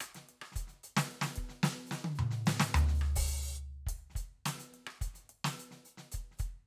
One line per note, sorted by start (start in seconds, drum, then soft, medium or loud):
0.01 closed hi-hat medium
0.01 cross-stick medium
0.15 snare soft
0.15 closed hi-hat soft
0.30 closed hi-hat soft
0.42 cross-stick medium
0.53 kick soft
0.53 snare soft
0.57 closed hi-hat medium
0.68 closed hi-hat soft
0.68 snare soft
0.74 snare soft
0.84 closed hi-hat medium
0.97 snare loud
1.12 closed hi-hat soft
1.22 snare loud
1.26 snare medium
1.34 closed hi-hat medium
1.34 hi-hat pedal soft
1.38 kick soft
1.44 kick soft
1.50 snare soft
1.63 snare loud
1.63 high tom soft
1.87 hi-hat pedal medium
1.92 snare medium
2.05 open hi-hat soft
2.05 high tom loud
2.16 hi-hat pedal soft
2.16 mid tom loud
2.31 snare soft
2.47 snare loud
2.47 hi-hat pedal medium
2.60 snare loud
2.75 hi-hat pedal medium
2.75 floor tom loud
2.89 snare soft
2.96 hi-hat pedal soft
3.02 cross-stick medium
3.16 open hi-hat loud
3.16 kick medium
3.87 kick soft
3.87 closed hi-hat medium
3.93 kick soft
4.11 snare soft
4.16 closed hi-hat medium
4.16 kick soft
4.24 kick soft
4.46 closed hi-hat medium
4.46 snare medium
4.58 closed hi-hat medium
4.58 snare soft
4.75 closed hi-hat soft
4.88 cross-stick medium
4.99 closed hi-hat medium
4.99 kick soft
4.99 snare soft
5.08 kick soft
5.14 closed hi-hat soft
5.14 snare soft
5.19 snare soft
5.24 snare soft
5.30 closed hi-hat soft
5.45 snare loud
5.60 closed hi-hat medium
5.72 snare soft
5.86 open hi-hat soft
5.98 snare soft
6.13 closed hi-hat medium
6.13 kick soft
6.32 snare soft
6.38 closed hi-hat medium
6.38 kick soft
6.38 snare soft
6.38 hi-hat pedal soft
6.50 kick soft